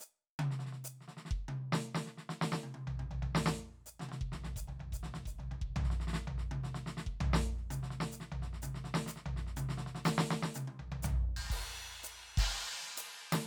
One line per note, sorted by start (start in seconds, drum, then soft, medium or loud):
0.01 hi-hat pedal medium
0.40 high tom loud
0.52 snare soft
0.60 snare soft
0.67 snare soft
0.73 snare soft
0.85 hi-hat pedal loud
1.02 snare soft
1.09 snare soft
1.18 snare soft
1.26 snare soft
1.32 kick medium
1.49 high tom loud
1.73 snare loud
1.96 snare medium
2.07 snare soft
2.18 snare soft
2.30 snare medium
2.42 snare medium
2.53 snare medium
2.64 high tom medium
2.75 high tom medium
2.88 floor tom medium
3.00 high tom medium
3.12 floor tom medium
3.23 floor tom medium
3.36 snare loud
3.47 snare loud
3.87 hi-hat pedal medium
4.00 snare soft
4.00 high tom medium
4.10 snare soft
4.10 high tom medium
4.22 kick medium
4.33 snare soft
4.33 floor tom medium
4.45 snare soft
4.45 floor tom medium
4.57 kick soft
4.57 hi-hat pedal medium
4.68 floor tom medium
4.68 high tom soft
4.80 floor tom medium
4.80 high tom soft
4.93 kick soft
4.93 hi-hat pedal medium
5.04 snare soft
5.04 floor tom medium
5.15 snare soft
5.15 floor tom medium
5.26 kick soft
5.26 hi-hat pedal medium
5.40 floor tom medium
5.40 high tom soft
5.52 floor tom medium
5.52 high tom medium
5.62 kick medium
5.77 floor tom loud
5.84 snare soft
5.91 snare soft
6.01 snare soft
6.08 snare medium
6.14 snare medium
6.28 floor tom medium
6.39 snare soft
6.52 high tom loud
6.65 snare soft
6.75 snare soft
6.87 snare medium
6.98 snare medium
7.07 kick medium
7.21 floor tom loud
7.34 snare loud
7.58 snare soft
7.71 hi-hat pedal medium
7.71 high tom loud
7.84 snare soft
7.91 snare soft
8.01 snare medium
8.13 hi-hat pedal medium
8.21 snare soft
8.33 floor tom medium
8.43 snare soft
8.54 snare soft
8.63 hi-hat pedal medium
8.63 high tom medium
8.75 snare soft
8.85 snare soft
8.95 snare medium
9.07 snare medium
9.07 hi-hat pedal medium
9.17 snare soft
9.27 floor tom medium
9.37 snare soft
9.47 snare soft
9.57 hi-hat pedal medium
9.57 high tom loud
9.70 snare medium
9.78 snare medium
9.87 snare soft
9.96 snare medium
10.06 snare loud
10.06 hi-hat pedal medium
10.19 snare loud
10.31 snare medium
10.43 snare medium
10.55 hi-hat pedal medium
10.55 high tom loud
10.68 high tom medium
10.80 floor tom medium
10.93 floor tom medium
11.03 floor tom loud
11.03 hi-hat pedal loud
11.37 kick soft
11.37 ride medium
11.51 kick medium
11.51 crash medium
12.04 hi-hat pedal loud
12.04 ride medium
12.38 kick medium
12.38 ride loud
12.83 snare soft
12.98 hi-hat pedal loud
12.98 ride loud
13.33 snare loud
13.33 ride loud